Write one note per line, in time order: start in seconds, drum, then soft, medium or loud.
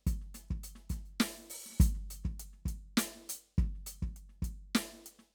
0.01 snare soft
0.07 closed hi-hat medium
0.07 kick medium
0.21 snare soft
0.34 closed hi-hat medium
0.34 snare soft
0.49 kick medium
0.49 closed hi-hat soft
0.63 closed hi-hat medium
0.75 snare soft
0.90 closed hi-hat soft
0.90 kick medium
0.90 snare soft
1.05 closed hi-hat soft
1.20 open hi-hat medium
1.20 snare loud
1.50 open hi-hat medium
1.66 snare soft
1.70 snare soft
1.72 snare soft
1.78 closed hi-hat loud
1.78 kick loud
1.78 hi-hat pedal soft
1.95 snare soft
2.10 closed hi-hat medium
2.24 kick medium
2.24 snare soft
2.40 closed hi-hat medium
2.53 snare soft
2.66 kick medium
2.66 snare soft
2.66 closed hi-hat medium
2.97 closed hi-hat loud
2.97 snare loud
3.29 closed hi-hat loud
3.58 kick medium
3.58 closed hi-hat soft
3.75 snare soft
3.86 closed hi-hat medium
4.02 kick medium
4.02 snare soft
4.16 closed hi-hat soft
4.29 snare soft
4.42 kick medium
4.42 closed hi-hat medium
4.75 closed hi-hat medium
4.75 snare loud
5.06 closed hi-hat medium
5.19 snare soft